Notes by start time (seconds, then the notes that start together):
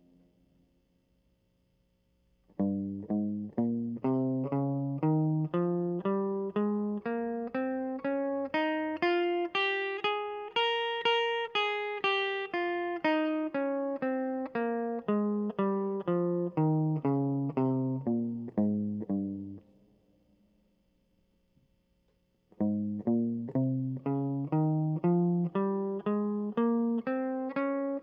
2.62 G2
3.12 G#2
3.60 A#2
4.06 C3
4.54 C#3
5.04 D#3
5.55 F3
6.06 G3
6.57 G#3
7.06 A#3
7.55 C4
8.05 C#4
8.55 D#4
9.03 F4
9.56 G4
10.05 G#4
10.57 A#4
11.06 A#4
11.56 G#4
12.05 G4
12.54 F4
13.05 D#4
13.55 C#4
14.03 C4
14.56 A#3
15.09 G#3
15.60 G3
16.09 F3
16.59 D#3
17.06 C#3
17.59 C3
18.09 A#2
18.60 G#2
19.12 G2
22.62 G#2
23.09 A#2
23.57 C3
24.07 C#3
24.54 D#3
25.05 F3
25.56 G3
26.07 G#3
26.58 A#3
27.08 C4
27.57 C#4